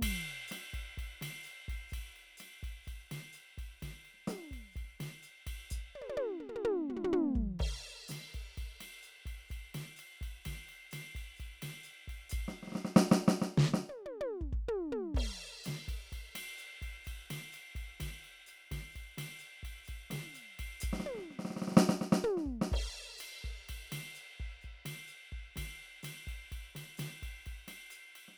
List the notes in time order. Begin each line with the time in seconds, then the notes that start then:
0.01 kick, ride
0.06 kick
0.47 snare, hi-hat pedal, ride
0.73 kick, ride
0.97 kick, ride
1.21 snare, ride
1.43 hi-hat pedal, ride
1.68 kick, ride
1.73 kick
1.89 kick, hi-hat pedal
1.93 kick, ride
2.15 ride
2.37 snare, hi-hat pedal, ride
2.62 kick, ride
2.83 kick, hi-hat pedal, ride
3.11 snare, ride
3.32 hi-hat pedal, ride
3.57 kick, ride
3.79 kick, snare, hi-hat pedal, ride
4.04 ride
4.13 snare
4.27 snare, hi-hat pedal, mid tom, ride
4.50 kick, ride
4.71 kick, hi-hat pedal
4.76 ride
4.80 kick, snare
4.99 snare, ride
5.22 hi-hat pedal, ride
5.46 kick, ride
5.70 kick, hi-hat pedal
5.76 kick
5.94 high tom
6.01 high tom
6.09 high tom
6.16 high tom
6.39 mid tom
6.48 mid tom
6.55 mid tom
6.64 mid tom
6.88 floor tom
6.95 floor tom
7.03 floor tom
7.12 floor tom
7.35 kick
7.40 kick
7.59 kick, crash
8.08 snare, hi-hat pedal, ride
8.33 kick, ride
8.53 kick, hi-hat pedal, ride
8.62 kick
8.80 snare, ride
9.02 hi-hat pedal, ride
9.25 kick, ride
9.48 kick, hi-hat pedal, ride
9.73 snare, ride
9.96 hi-hat pedal, ride
10.20 kick, ride
10.43 kick, snare, hi-hat pedal, ride
10.68 ride
10.90 snare, hi-hat pedal, ride
11.14 kick, ride
11.36 kick, hi-hat pedal, ride
11.61 snare, ride
11.83 hi-hat pedal, ride
12.07 kick, ride
12.29 kick, hi-hat pedal, ride
12.38 kick
12.47 snare
12.62 snare
12.67 snare
12.71 snare
12.75 snare
12.84 snare
12.96 snare
13.11 snare
13.27 snare
13.41 snare
13.57 snare
13.61 snare
13.73 snare
13.88 high tom
14.05 high tom
14.20 high tom
14.40 kick
14.52 kick
14.67 mid tom
14.91 mid tom
15.14 kick, crash
15.23 kick
15.63 snare, hi-hat pedal, ride
15.67 snare
15.87 kick, ride
15.92 kick
16.09 kick, hi-hat pedal, ride
16.34 snare, ride
16.57 hi-hat pedal, ride
16.81 kick, ride
17.04 kick, hi-hat pedal, ride
17.29 snare, ride
17.52 hi-hat pedal, ride
17.75 kick, ride
17.99 kick, snare, hi-hat pedal, ride
18.23 ride
18.46 hi-hat pedal, ride
18.71 kick, snare, ride
18.91 kick, hi-hat pedal, ride
19.17 snare, ride
19.38 hi-hat pedal, ride
19.62 kick, ride
19.84 hi-hat pedal, ride
19.88 kick
20.10 snare, mid tom, ride
20.12 snare
20.34 hi-hat pedal, ride
20.58 kick, ride
20.80 kick, hi-hat pedal, ride
20.92 snare
20.99 snare
21.05 high tom
21.14 snare
21.18 snare
21.21 snare
21.30 snare
21.38 snare
21.44 snare
21.50 snare
21.56 snare
21.61 snare
21.67 snare
21.71 snare
21.76 snare
21.88 snare
22.01 snare
22.12 snare
22.23 mid tom
22.37 snare
22.45 kick
22.61 snare
22.71 kick, crash
22.77 kick
23.18 hi-hat pedal, ride
23.44 kick
23.68 kick, ride
23.91 snare, ride
24.14 hi-hat pedal
24.38 kick, ride
24.61 kick, hi-hat pedal, ride
24.84 snare, ride
25.07 hi-hat pedal
25.31 kick
25.53 kick, snare, hi-hat pedal, ride
26.02 snare, hi-hat pedal, ride
26.26 kick, ride
26.48 kick, hi-hat pedal, ride
26.74 snare, ride
26.97 snare, hi-hat pedal, ride
27.22 kick, ride
27.41 hi-hat pedal, ride
27.46 kick
27.67 snare, ride
27.90 hi-hat pedal, ride
28.15 ride
28.28 snare